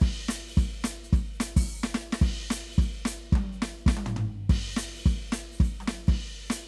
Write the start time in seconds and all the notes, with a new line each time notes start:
0.01 kick, crash
0.24 hi-hat pedal
0.28 closed hi-hat, snare
0.48 open hi-hat
0.57 open hi-hat, kick
0.81 closed hi-hat, snare, hi-hat pedal
1.04 closed hi-hat
1.13 open hi-hat, kick
1.33 hi-hat pedal
1.40 closed hi-hat, snare
1.56 open hi-hat, kick
1.83 snare, hi-hat pedal
1.94 snare
2.12 snare
2.21 kick, crash
2.47 snare, hi-hat pedal
2.51 closed hi-hat
2.71 open hi-hat
2.78 open hi-hat, kick
2.98 hi-hat pedal
3.05 closed hi-hat, snare
3.32 kick, high tom
3.52 hi-hat pedal
3.62 snare
3.86 kick, snare
3.97 high tom
4.06 floor tom, hi-hat pedal
4.16 floor tom
4.49 kick, crash
4.71 hi-hat pedal
4.76 closed hi-hat, snare
4.96 open hi-hat
5.06 kick, snare
5.27 hi-hat pedal
5.32 closed hi-hat, snare
5.52 open hi-hat
5.60 open hi-hat, kick
5.80 hi-hat pedal, high tom
5.87 snare
6.07 kick, crash
6.45 hi-hat pedal
6.50 closed hi-hat, snare